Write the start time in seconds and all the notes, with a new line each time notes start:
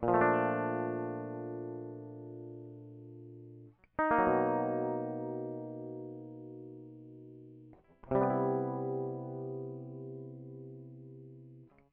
0.04 A#2
0.08 F3
0.14 A3
0.21 D4
3.99 D#4
4.11 A#3
4.19 F#3
4.28 B2
8.12 C3 G3
8.21 B3